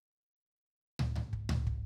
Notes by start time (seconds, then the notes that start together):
0.99 floor tom, high tom
1.16 floor tom, high tom
1.33 kick
1.49 floor tom, high tom
1.67 kick